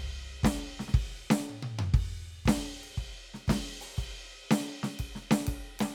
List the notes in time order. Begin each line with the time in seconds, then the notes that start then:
0.44 kick, snare, ride
0.80 snare
0.89 snare
0.95 kick, crash
1.31 snare
1.50 high tom
1.63 high tom
1.80 mid tom
1.95 kick, crash
2.13 closed hi-hat
2.46 kick, snare, ride
2.84 ride
2.98 kick, ride
3.34 snare
3.48 kick, snare, hi-hat pedal, ride
3.81 open hi-hat
3.98 kick, hi-hat pedal, ride
4.44 hi-hat pedal
4.52 snare, ride
4.84 snare
5.00 kick, ride
5.16 snare
5.32 snare
5.48 kick, ride
5.80 snare, ride